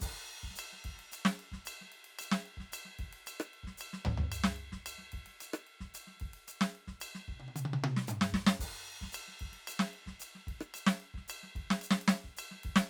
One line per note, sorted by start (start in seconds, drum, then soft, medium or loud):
0.01 kick medium
0.01 hi-hat pedal medium
0.01 crash medium
0.10 cross-stick soft
0.14 kick soft
0.43 kick soft
0.51 snare soft
0.56 hi-hat pedal medium
0.56 ride bell loud
0.73 snare soft
0.84 kick soft
0.84 ride medium
0.91 kick soft
0.96 snare soft
0.96 ride medium
1.01 snare soft
1.12 hi-hat pedal medium
1.12 ride bell loud
1.25 snare loud
1.39 ride medium
1.52 kick soft
1.52 snare soft
1.65 hi-hat pedal medium
1.65 ride bell loud
1.81 snare soft
1.87 snare soft
1.92 ride medium
2.05 ride medium
2.19 hi-hat pedal medium
2.19 ride bell loud
2.32 snare medium
2.46 ride soft
2.57 kick soft
2.57 snare soft
2.72 hi-hat pedal medium
2.72 ride bell loud
2.85 snare soft
2.99 kick soft
2.99 ride medium
3.08 kick soft
3.08 snare soft
3.13 ride medium
3.26 hi-hat pedal medium
3.26 ride bell loud
3.40 cross-stick medium
3.54 ride soft
3.64 kick soft
3.64 snare soft
3.78 hi-hat pedal medium
3.78 ride bell loud
3.93 snare medium
4.05 kick soft
4.05 floor tom loud
4.12 kick soft
4.18 floor tom loud
4.32 hi-hat pedal medium
4.32 ride bell loud
4.44 snare loud
4.56 ride soft
4.72 kick soft
4.72 snare medium
4.86 hi-hat pedal medium
4.86 ride bell loud
4.98 snare soft
5.12 kick soft
5.12 ride medium
5.19 kick soft
5.26 snare soft
5.26 ride medium
5.41 hi-hat pedal medium
5.41 ride bell loud
5.54 cross-stick medium
5.67 ride soft
5.81 kick soft
5.81 snare soft
5.94 hi-hat pedal medium
5.94 ride bell loud
6.07 snare soft
6.17 snare soft
6.17 ride medium
6.21 kick soft
6.21 snare soft
6.26 snare soft
6.30 kick soft
6.30 ride medium
6.48 hi-hat pedal medium
6.48 ride bell medium
6.61 snare loud
6.75 ride soft
6.87 kick soft
6.87 snare soft
7.00 hi-hat pedal medium
7.00 ride bell loud
7.15 snare medium
7.28 kick soft
7.28 high tom soft
7.40 high tom medium
7.48 high tom medium
7.56 hi-hat pedal medium
7.56 high tom medium
7.65 high tom loud
7.74 high tom loud
7.84 high tom loud
7.97 snare medium
8.08 hi-hat pedal medium
8.08 mid tom loud
8.21 snare loud
8.33 kick soft
8.33 snare loud
8.47 snare loud
8.59 kick medium
8.59 hi-hat pedal medium
8.59 crash medium
9.01 kick soft
9.01 snare soft
9.12 hi-hat pedal medium
9.12 ride bell loud
9.28 snare soft
9.40 kick soft
9.40 ride medium
9.47 kick soft
9.52 snare soft
9.52 ride medium
9.68 hi-hat pedal medium
9.68 ride bell loud
9.79 snare medium
9.93 ride soft
10.06 kick soft
10.06 snare soft
10.11 kick soft
10.20 hi-hat pedal medium
10.20 ride bell medium
10.35 snare soft
10.47 kick soft
10.47 ride medium
10.53 kick soft
10.61 cross-stick medium
10.74 hi-hat pedal medium
10.74 ride bell loud
10.87 snare loud
11.00 ride soft
11.14 kick soft
11.14 snare soft
11.28 hi-hat pedal medium
11.28 ride bell loud
11.43 snare soft
11.55 kick soft
11.55 ride soft
11.62 kick soft
11.71 snare medium
11.82 hi-hat pedal medium
11.82 ride bell medium
11.91 snare loud
12.02 ride medium
12.08 snare loud
12.24 kick soft
12.37 hi-hat pedal medium
12.37 ride bell loud
12.51 snare soft
12.64 kick soft
12.64 ride medium
12.71 kick soft
12.75 kick soft
12.75 snare loud